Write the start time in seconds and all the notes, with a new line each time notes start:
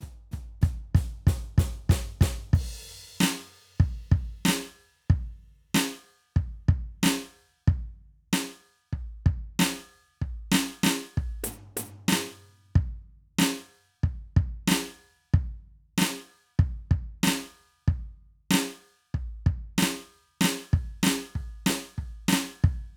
0.01 kick, snare, floor tom
0.32 kick, snare, floor tom
0.62 kick, snare, floor tom
0.95 kick, snare, floor tom
1.27 kick, snare, floor tom
1.58 kick, snare, floor tom
1.90 kick, snare, floor tom
2.21 kick, snare, floor tom
2.54 kick, crash
3.21 snare
3.24 snare
3.80 kick
4.12 kick
4.46 snare
4.49 snare
5.10 kick
5.75 snare
5.77 snare
6.37 kick
6.69 kick
7.03 snare
7.06 snare
7.68 kick
8.33 snare
8.93 kick
9.26 kick
9.60 snare
9.62 snare
10.22 kick
10.52 snare
10.55 snare
10.84 snare
10.87 snare
11.18 kick
11.44 floor tom, high tom
11.77 floor tom, high tom
12.09 snare
12.13 snare
12.76 kick
13.39 snare
13.42 snare
14.04 kick
14.37 kick
14.68 snare
14.72 snare
15.34 kick
15.98 snare
16.02 snare
16.59 kick
16.91 kick
17.24 snare
17.28 snare
17.88 kick
18.51 snare
18.54 snare
19.15 kick
19.47 kick
19.78 snare
19.83 snare
20.41 snare
20.45 snare
20.74 kick
21.03 snare
21.07 snare
21.36 kick
21.67 snare
21.70 snare
21.98 kick
22.29 snare
22.33 snare
22.64 kick